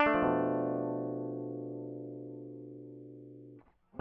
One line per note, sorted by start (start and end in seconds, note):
0.00 3.64 D4
0.07 3.64 A3
0.16 3.65 F3
0.24 3.72 B2
0.30 0.97 F2